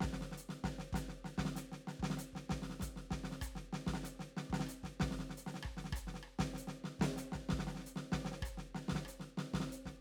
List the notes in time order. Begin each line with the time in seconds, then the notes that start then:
0.01 kick, snare
0.13 snare
0.21 snare
0.32 snare
0.38 hi-hat pedal
0.49 snare
0.64 kick, snare
0.79 snare
0.93 kick, snare, hi-hat pedal
1.09 snare
1.25 snare
1.38 kick, snare
1.46 snare
1.56 snare, hi-hat pedal
1.72 snare
1.88 snare
2.00 kick, snare
2.11 snare
2.18 snare, hi-hat pedal
2.33 kick, snare
2.50 kick, snare
2.62 snare
2.70 snare
2.80 kick, snare, hi-hat pedal
2.97 snare
3.11 kick, snare
3.24 snare
3.32 snare
3.42 kick, cross-stick, hi-hat pedal
3.56 snare
3.73 snare
3.87 kick, snare
3.94 snare
4.04 snare, hi-hat pedal
4.20 snare
4.37 snare
4.50 kick, snare
4.60 snare
4.67 cross-stick, hi-hat pedal
4.84 kick, snare
5.00 kick, snare
5.11 snare
5.19 snare
5.30 snare
5.38 snare, hi-hat pedal
5.47 snare
5.55 snare
5.63 kick, cross-stick
5.77 snare
5.85 snare
5.92 kick, cross-stick, snare
5.96 hi-hat pedal
6.00 kick
6.08 snare
6.15 snare
6.23 cross-stick
6.39 kick, snare
6.54 snare
6.58 hi-hat pedal
6.68 snare
6.85 snare
7.00 kick, snare
7.17 snare, hi-hat pedal
7.33 kick, snare
7.49 kick, snare
7.67 snare
7.75 snare
7.79 snare
7.87 hi-hat pedal
7.96 snare
8.12 kick, snare
8.25 snare
8.32 snare
8.43 kick, cross-stick, hi-hat pedal
8.58 snare
8.75 snare
8.89 kick, snare
8.95 snare
9.06 cross-stick, hi-hat pedal
9.20 snare
9.38 snare
9.54 kick, snare
9.61 snare
9.68 snare
9.73 hi-hat pedal
9.86 kick, snare